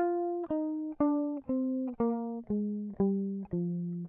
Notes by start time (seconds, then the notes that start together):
0.00 F4
0.51 D#4
1.01 D4
1.50 C4
1.90 B3
2.01 A#3
2.51 G#3
3.01 G3
3.55 F3